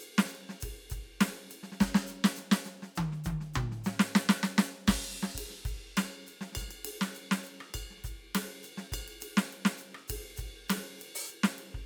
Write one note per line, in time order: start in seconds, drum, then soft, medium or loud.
0.00 hi-hat pedal medium
0.19 snare loud
0.26 snare soft
0.26 hi-hat pedal medium
0.36 ride soft
0.50 snare medium
0.61 kick soft
0.61 hi-hat pedal medium
0.61 ride loud
0.68 snare soft
0.74 snare soft
0.89 kick soft
0.89 snare soft
0.89 hi-hat pedal medium
0.89 ride medium
1.01 kick soft
1.21 snare loud
1.21 hi-hat pedal medium
1.21 ride loud
1.28 snare soft
1.51 hi-hat pedal medium
1.51 ride medium
1.64 snare soft
1.73 snare soft
1.81 kick soft
1.81 snare loud
1.81 hi-hat pedal loud
1.95 snare loud
2.00 snare soft
2.07 snare soft
2.07 hi-hat pedal loud
2.25 snare loud
2.36 snare soft
2.36 hi-hat pedal loud
2.52 snare loud
2.65 snare soft
2.65 hi-hat pedal medium
2.83 snare soft
2.96 kick soft
2.96 hi-hat pedal medium
2.96 high tom loud
3.13 snare soft
3.25 kick soft
3.25 hi-hat pedal medium
3.25 high tom loud
3.33 kick soft
3.41 snare soft
3.54 kick soft
3.54 hi-hat pedal medium
3.54 mid tom loud
3.72 snare soft
3.82 snare soft
3.82 hi-hat pedal medium
3.87 snare medium
4.00 snare loud
4.16 snare loud
4.16 hi-hat pedal soft
4.30 snare loud
4.38 hi-hat pedal soft
4.44 snare loud
4.59 snare loud
4.64 hi-hat pedal medium
4.88 kick medium
4.88 snare loud
4.88 hi-hat pedal medium
4.88 crash loud
4.95 kick soft
5.23 snare medium
5.35 kick soft
5.35 hi-hat pedal medium
5.35 ride loud
5.50 snare soft
5.55 snare soft
5.58 snare soft
5.66 kick medium
5.66 hi-hat pedal medium
5.66 ride medium
5.76 kick soft
5.97 snare loud
5.97 hi-hat pedal medium
5.97 ride bell loud
6.27 hi-hat pedal medium
6.27 ride medium
6.41 snare medium
6.53 snare soft
6.53 ride bell loud
6.57 kick soft
6.57 hi-hat pedal medium
6.62 kick soft
6.62 snare soft
6.69 snare soft
6.69 ride bell medium
6.85 hi-hat pedal medium
6.85 ride loud
7.02 snare medium
7.06 cross-stick soft
7.15 hi-hat pedal medium
7.15 ride soft
7.32 snare loud
7.44 hi-hat pedal medium
7.44 ride soft
7.61 cross-stick medium
7.70 snare soft
7.75 kick soft
7.75 hi-hat pedal medium
7.75 ride bell loud
7.91 snare soft
7.98 snare soft
8.05 kick soft
8.05 hi-hat pedal medium
8.05 ride medium
8.13 kick soft
8.35 snare loud
8.35 hi-hat pedal medium
8.35 ride loud
8.44 snare soft
8.64 hi-hat pedal medium
8.64 ride medium
8.78 snare medium
8.93 kick soft
8.93 snare soft
8.93 hi-hat pedal loud
8.93 ride bell loud
9.01 snare soft
9.05 snare soft
9.05 ride medium
9.21 hi-hat pedal medium
9.21 ride loud
9.38 snare loud
9.48 hi-hat pedal soft
9.53 ride medium
9.66 snare loud
9.78 hi-hat pedal medium
9.82 ride soft
9.95 cross-stick medium
10.09 kick soft
10.09 snare soft
10.09 hi-hat pedal medium
10.09 ride loud
10.22 cross-stick soft
10.37 kick soft
10.37 hi-hat pedal medium
10.37 ride medium
10.48 kick soft
10.69 snare loud
10.69 hi-hat pedal medium
10.69 ride loud
10.78 snare soft
11.00 hi-hat pedal medium
11.00 ride medium
11.16 open hi-hat loud
11.26 hi-hat pedal soft
11.30 ride medium
11.44 snare loud
11.59 ride medium
11.75 kick soft